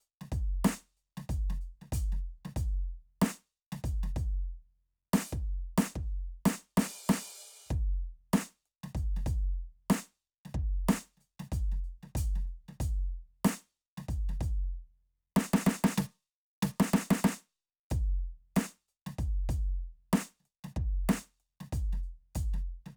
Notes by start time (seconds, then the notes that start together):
0.01 closed hi-hat
0.22 snare
0.33 closed hi-hat, kick
0.65 closed hi-hat, snare
0.97 closed hi-hat
1.18 snare
1.30 closed hi-hat, kick
1.51 snare
1.62 closed hi-hat
1.82 snare
1.93 closed hi-hat, kick
2.13 snare
2.46 snare
2.57 closed hi-hat, kick
3.22 closed hi-hat, snare
3.73 snare
3.85 closed hi-hat, kick
4.04 snare
4.17 closed hi-hat, kick
5.14 open hi-hat, snare
5.31 kick, hi-hat pedal
5.78 closed hi-hat, snare
5.96 kick
6.46 open hi-hat, snare
6.78 open hi-hat, snare
7.10 open hi-hat, snare
7.67 kick, hi-hat pedal
7.71 kick
8.34 closed hi-hat, snare
8.66 closed hi-hat
8.84 snare
8.95 closed hi-hat, kick, snare
9.17 snare
9.27 closed hi-hat, kick
9.91 closed hi-hat, snare
10.46 snare
10.55 kick
10.89 closed hi-hat, snare
11.18 closed hi-hat, snare
11.40 snare
11.53 closed hi-hat, kick
11.72 snare
11.84 closed hi-hat
12.03 snare
12.16 closed hi-hat, kick
12.36 snare
12.45 snare, closed hi-hat
12.69 snare
12.81 closed hi-hat, kick
13.45 closed hi-hat, snare
13.98 snare
14.09 closed hi-hat, kick
14.30 snare
14.41 closed hi-hat, kick
15.37 snare
15.54 snare
15.67 snare
15.85 snare
15.98 snare
16.63 snare
16.81 snare
16.94 snare
17.11 snare
17.25 snare
17.91 closed hi-hat, kick
18.57 closed hi-hat, snare
18.89 closed hi-hat
19.07 snare
19.19 closed hi-hat, kick, crash
19.50 closed hi-hat, kick
20.14 closed hi-hat, snare
20.40 snare
20.46 closed hi-hat
20.65 snare
20.77 kick, closed hi-hat
21.10 closed hi-hat, snare
21.41 closed hi-hat
21.61 snare
21.73 closed hi-hat, kick
21.93 snare
22.03 closed hi-hat
22.36 closed hi-hat, kick
22.54 snare
22.87 snare